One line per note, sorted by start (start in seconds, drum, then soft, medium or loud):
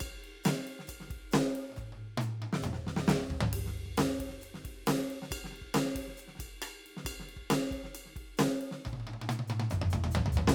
0.01 kick soft
0.01 hi-hat pedal medium
0.01 ride bell loud
0.08 kick soft
0.08 snare soft
0.14 snare soft
0.16 snare soft
0.25 ride soft
0.44 snare loud
0.44 hi-hat pedal medium
0.44 ride bell loud
0.68 ride medium
0.80 snare soft
0.88 kick soft
0.88 hi-hat pedal medium
0.88 ride bell medium
1.01 snare soft
1.08 kick soft
1.08 snare soft
1.08 ride medium
1.17 kick soft
1.32 snare loud
1.32 hi-hat pedal medium
1.32 ride bell medium
1.56 ride medium
1.65 cross-stick soft
1.70 open hi-hat soft
1.70 high tom soft
1.73 high tom soft
1.77 kick soft
1.77 hi-hat pedal soft
1.77 high tom medium
1.93 high tom medium
2.18 hi-hat pedal medium
2.18 high tom loud
2.43 high tom medium
2.53 snare medium
2.62 kick soft
2.62 hi-hat pedal medium
2.62 mid tom loud
2.74 snare soft
2.85 kick soft
2.85 snare medium
2.97 snare medium
3.07 kick soft
3.07 snare loud
3.07 hi-hat pedal medium
3.14 kick soft
3.21 cross-stick soft
3.31 kick soft
3.31 floor tom medium
3.38 kick soft
3.38 floor tom loud
3.54 kick soft
3.54 hi-hat pedal soft
3.54 ride loud
3.64 kick soft
3.64 snare soft
3.78 ride soft
3.86 kick soft
3.91 kick soft
3.98 snare loud
3.98 hi-hat pedal medium
3.98 ride loud
4.20 kick soft
4.20 ride medium
4.26 kick soft
4.26 snare soft
4.42 hi-hat pedal soft
4.42 ride medium
4.55 snare soft
4.65 kick soft
4.65 ride medium
4.71 kick soft
4.87 snare loud
4.87 hi-hat pedal medium
4.87 ride loud
4.98 snare soft
5.11 ride medium
5.23 snare soft
5.32 kick soft
5.32 hi-hat pedal medium
5.32 ride bell loud
5.37 kick soft
5.45 snare soft
5.52 snare soft
5.57 ride soft
5.62 kick soft
5.67 kick soft
5.75 snare loud
5.75 hi-hat pedal medium
5.75 ride bell loud
5.86 snare soft
5.96 kick soft
5.96 ride medium
6.02 kick soft
6.08 snare soft
6.18 hi-hat pedal medium
6.18 ride soft
6.28 snare soft
6.36 kick soft
6.36 snare soft
6.41 ride bell medium
6.46 kick soft
6.63 cross-stick medium
6.63 hi-hat pedal medium
6.63 ride bell loud
6.87 ride medium
6.97 snare soft
7.06 kick soft
7.06 hi-hat pedal medium
7.06 ride bell loud
7.12 kick soft
7.20 snare soft
7.30 ride soft
7.37 kick soft
7.42 kick soft
7.51 snare loud
7.51 hi-hat pedal medium
7.51 ride bell loud
7.72 kick soft
7.72 ride soft
7.78 kick soft
7.84 snare soft
7.95 hi-hat pedal medium
7.95 ride bell medium
8.06 snare soft
8.17 kick soft
8.17 ride medium
8.22 kick soft
8.38 snare loud
8.38 hi-hat pedal medium
8.38 ride bell loud
8.47 snare soft
8.62 ride medium
8.72 snare soft
8.86 kick soft
8.86 hi-hat pedal soft
8.86 high tom medium
8.94 kick soft
8.94 high tom medium
9.01 high tom medium
9.08 high tom medium
9.14 high tom medium
9.22 high tom medium
9.30 hi-hat pedal medium
9.30 high tom loud
9.40 high tom loud
9.48 kick soft
9.48 hi-hat pedal soft
9.48 high tom loud
9.60 high tom loud
9.71 kick soft
9.71 hi-hat pedal medium
9.71 mid tom loud
9.80 kick soft
9.80 mid tom loud
9.91 kick soft
9.91 hi-hat pedal medium
9.91 mid tom loud
10.05 mid tom loud
10.12 kick soft
10.12 hi-hat pedal medium
10.12 floor tom loud
10.27 floor tom loud
10.33 kick soft
10.33 hi-hat pedal medium
10.38 floor tom loud
10.48 snare loud